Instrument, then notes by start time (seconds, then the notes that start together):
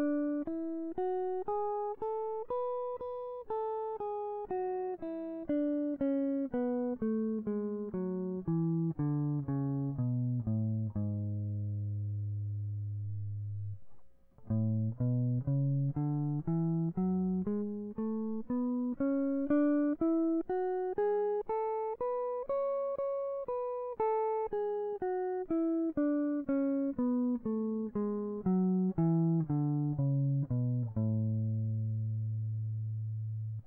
electric guitar
0.00 D4
0.48 E4
0.98 F#4
1.49 G#4
2.03 A4
2.51 B4
3.00 B4
3.51 A4
4.01 G#4
4.51 F#4
5.01 E4
5.50 D4
6.02 C#4
6.55 B3
7.03 A3
7.48 G#3
7.95 F#3
8.49 E3
9.01 D3
9.50 C#3
10.01 B2
10.51 A2
10.99 G#2
14.53 A2
15.02 B2
15.50 C#3
15.98 D3
16.49 E3
16.99 F#3
17.48 G#3
17.99 A3
18.51 B3
19.01 C#4
19.51 D4
20.02 E4
20.50 F#4
20.99 G#4
21.50 A4
22.01 B4
22.50 C#5
22.99 C#5
23.49 B4
24.00 A4
24.53 G#4
25.03 F#4
25.51 E4
25.98 D4
26.50 C#4
26.99 B3
27.47 A3
27.96 G#3
28.47 F#3
28.99 E3
29.51 D3
30.01 C#3
30.53 B2
30.99 A2